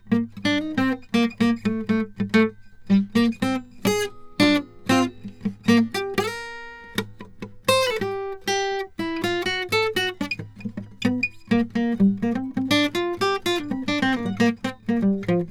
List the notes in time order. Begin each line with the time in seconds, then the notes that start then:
0.13 A#3
0.46 D4
0.60 D#4
0.79 C4
1.15 A#3
1.42 A#3
1.66 A3
1.90 A3
2.35 A3
2.91 G3
3.16 A#3
3.43 C4
3.86 D4 G#4
4.41 D4 F4
4.91 C4 F4
5.70 A#3
5.96 G4
6.19 A#4
7.70 C5
7.83 B4
8.03 G4
8.49 G4
9.00 E4
9.25 F4
9.48 F#4
9.73 A4
9.98 F#4
11.06 B3
11.52 A#3
11.76 A#3
12.01 G3
12.24 A#3
12.37 C4
12.58 C4
12.72 D4
12.96 F4
13.22 G4
13.47 F4
13.58 D4
13.72 C4
13.89 D4
14.04 C4
14.14 A#3
14.41 A#3
14.65 C4
14.90 A#3
15.04 G3
15.30 F3